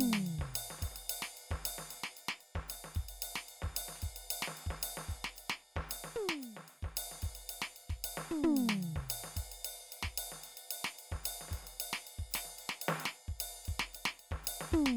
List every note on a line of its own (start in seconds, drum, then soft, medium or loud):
0.01 hi-hat pedal medium
0.01 ride loud
0.14 snare loud
0.27 ride soft
0.39 kick soft
0.39 snare soft
0.54 hi-hat pedal medium
0.54 ride bell loud
0.71 snare soft
0.79 kick soft
0.79 snare soft
0.79 ride medium
0.84 snare soft
0.92 snare soft
0.96 snare soft
0.96 ride medium
1.10 hi-hat pedal medium
1.10 ride bell loud
1.23 snare medium
1.37 ride soft
1.51 kick soft
1.51 snare soft
1.65 hi-hat pedal medium
1.65 ride bell loud
1.79 snare soft
1.91 ride medium
2.04 snare medium
2.17 hi-hat pedal medium
2.17 ride soft
2.29 snare loud
2.41 ride soft
2.56 kick soft
2.56 snare soft
2.69 hi-hat pedal medium
2.69 ride bell medium
2.85 snare soft
2.95 kick soft
2.95 ride soft
3.03 kick soft
3.09 ride medium
3.23 hi-hat pedal medium
3.23 ride bell loud
3.36 snare medium
3.49 ride soft
3.62 kick soft
3.62 snare soft
3.70 kick soft
3.76 hi-hat pedal medium
3.76 ride bell loud
3.89 snare soft
3.96 snare soft
4.02 kick soft
4.02 ride medium
4.17 ride medium
4.31 hi-hat pedal medium
4.31 ride bell loud
4.43 snare loud
4.48 snare soft
4.58 ride soft
4.67 kick soft
4.71 snare soft
4.82 hi-hat pedal medium
4.82 ride bell loud
4.98 snare soft
5.09 kick soft
5.09 ride soft
5.25 snare medium
5.36 hi-hat pedal medium
5.36 ride bell medium
5.50 snare loud
5.77 kick soft
5.77 snare medium
5.89 hi-hat pedal medium
5.89 ride bell loud
6.05 snare soft
6.16 mid tom medium
6.29 snare loud
6.42 hi-hat pedal medium
6.42 ride bell medium
6.57 snare soft
6.68 ride soft
6.83 kick soft
6.83 snare soft
6.97 hi-hat pedal medium
6.97 ride bell loud
7.12 snare soft
7.19 snare soft
7.23 kick soft
7.23 snare soft
7.23 ride medium
7.26 snare soft
7.36 ride medium
7.50 hi-hat pedal medium
7.50 ride medium
7.62 snare loud
7.77 ride soft
7.90 kick soft
7.90 snare soft
8.05 hi-hat pedal medium
8.05 ride loud
8.18 snare medium
8.31 floor tom medium
8.44 floor tom loud
8.57 hi-hat pedal medium
8.57 ride bell medium
8.70 snare loud
8.83 ride medium
8.96 kick soft
8.96 snare soft
9.09 hi-hat pedal medium
9.09 ride bell loud
9.24 snare soft
9.37 kick soft
9.37 ride medium
9.52 ride bell medium
9.65 hi-hat pedal medium
9.65 ride loud
9.93 ride medium
10.03 kick soft
10.03 snare medium
10.18 hi-hat pedal medium
10.18 ride bell loud
10.32 snare soft
10.44 ride medium
10.58 ride medium
10.71 hi-hat pedal medium
10.71 ride bell loud
10.85 snare loud
10.99 ride medium
11.12 kick soft
11.12 snare soft
11.24 hi-hat pedal medium
11.24 ride bell loud
11.42 snare soft
11.49 kick soft
11.49 snare soft
11.54 snare soft
11.54 ride medium
11.58 snare soft
11.63 snare soft
11.67 ride medium
11.80 hi-hat pedal medium
11.80 ride bell loud
11.94 snare loud
12.07 ride medium
12.19 kick soft
12.32 hi-hat pedal medium
12.32 ride bell loud
12.36 snare medium
12.46 snare soft
12.59 ride medium
12.70 snare medium
12.82 ride bell medium
12.88 snare medium
12.88 hi-hat pedal medium
13.00 ride medium
13.06 snare loud
13.29 kick soft
13.40 hi-hat pedal medium
13.40 ride bell loud
13.66 kick soft
13.66 ride medium
13.80 snare loud
13.94 hi-hat pedal medium
13.94 ride medium
14.06 snare loud
14.20 ride soft
14.32 kick soft
14.32 snare soft
14.44 hi-hat pedal medium
14.44 ride bell loud
14.61 snare soft
14.73 kick soft
14.73 floor tom loud
14.78 kick soft
14.86 snare loud